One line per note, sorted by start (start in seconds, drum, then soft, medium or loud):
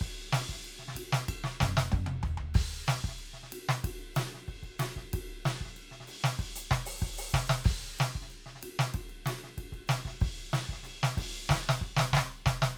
0.01 kick medium
0.01 ride medium
0.33 snare loud
0.33 hi-hat pedal medium
0.33 ride loud
0.49 kick medium
0.49 snare soft
0.64 ride medium
0.79 snare soft
0.88 snare medium
0.91 snare soft
0.95 kick soft
0.95 hi-hat pedal medium
0.95 ride loud
1.13 snare loud
1.28 kick medium
1.28 ride bell loud
1.44 snare loud
1.60 kick medium
1.60 snare loud
1.60 hi-hat pedal medium
1.60 mid tom loud
1.77 snare loud
1.92 kick loud
1.92 hi-hat pedal soft
1.92 mid tom loud
2.06 high tom loud
2.23 kick medium
2.23 floor tom loud
2.23 hi-hat pedal soft
2.38 floor tom loud
2.52 kick soft
2.52 crash loud
2.55 kick loud
2.87 snare loud
2.87 hi-hat pedal medium
2.87 ride medium
3.04 kick medium
3.09 snare soft
3.19 ride soft
3.34 snare soft
3.43 snare soft
3.50 kick soft
3.50 hi-hat pedal medium
3.50 ride loud
3.69 snare loud
3.84 kick medium
3.84 ride loud
3.99 ride soft
4.14 snare loud
4.14 hi-hat pedal medium
4.14 ride loud
4.34 snare soft
4.48 kick medium
4.48 ride medium
4.63 kick soft
4.63 ride soft
4.79 snare loud
4.79 hi-hat pedal medium
4.79 ride loud
4.96 kick medium
4.96 snare soft
5.13 kick medium
5.13 ride loud
5.45 snare loud
5.45 hi-hat pedal medium
5.45 ride medium
5.61 kick medium
5.65 snare soft
5.76 ride medium
5.91 snare soft
6.00 kick soft
6.00 snare soft
6.07 hi-hat pedal medium
6.07 ride loud
6.24 snare loud
6.39 kick medium
6.39 ride medium
6.56 closed hi-hat loud
6.71 kick medium
6.71 snare loud
6.86 open hi-hat loud
7.01 kick medium
7.01 ride medium
7.18 open hi-hat loud
7.34 kick loud
7.34 snare loud
7.49 snare loud
7.64 kick loud
7.64 crash loud
7.99 snare loud
7.99 hi-hat pedal medium
7.99 ride medium
8.15 kick medium
8.22 snare soft
8.29 hi-hat pedal medium
8.29 ride soft
8.46 snare medium
8.55 snare soft
8.61 kick soft
8.61 hi-hat pedal medium
8.61 ride loud
8.79 snare loud
8.94 kick medium
8.94 ride loud
9.10 ride soft
9.25 snare loud
9.25 hi-hat pedal medium
9.25 ride loud
9.44 snare soft
9.58 kick medium
9.58 ride medium
9.72 kick medium
9.72 ride soft
9.88 snare loud
9.88 hi-hat pedal medium
9.88 ride medium
10.05 kick medium
10.05 snare medium
10.21 kick loud
10.21 ride medium
10.53 snare loud
10.53 hi-hat pedal medium
10.53 ride medium
10.69 kick medium
10.69 snare soft
10.83 snare soft
10.83 hi-hat pedal medium
10.83 ride medium
11.03 snare loud
11.14 kick medium
11.14 snare soft
11.14 ride loud
11.49 kick medium
11.49 snare loud
11.49 hi-hat pedal soft
11.52 snare loud
11.69 snare loud
11.82 kick medium
11.97 snare loud
11.99 snare loud
12.13 kick medium
12.13 snare loud
12.17 snare loud
12.46 kick medium
12.46 snare loud
12.62 snare loud